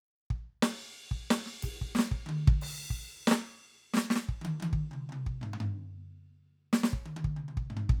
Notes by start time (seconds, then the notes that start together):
0.30 kick
0.62 snare, ride
1.11 kick
1.30 snare, ride
1.46 snare
1.63 kick, ride
1.81 kick
1.95 snare
1.99 snare
2.11 kick
2.26 high tom
2.29 high tom
2.47 kick
2.61 crash
2.90 kick
3.27 snare
3.31 snare
3.94 snare
3.97 snare
4.10 snare
4.16 snare
4.29 kick
4.41 high tom
4.45 high tom
4.60 high tom
4.62 high tom
4.73 kick
4.91 mid tom
4.93 mid tom
5.09 mid tom
5.12 mid tom
5.26 kick
5.41 floor tom
5.43 floor tom
5.53 floor tom
5.60 floor tom
6.73 snare
6.83 snare
6.93 kick
7.06 high tom
7.16 high tom
7.24 kick
7.36 mid tom
7.48 mid tom
7.57 kick
7.70 floor tom
7.77 floor tom
7.89 kick